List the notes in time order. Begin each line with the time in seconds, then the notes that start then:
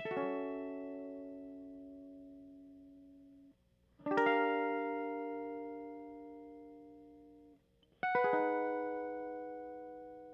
0.00 E5
0.06 A4
0.12 F#4
0.17 C#4
4.07 D4
4.12 G4
4.18 A#4
4.27 F5
8.04 F#5
8.16 B4
8.25 G#4
8.34 D#4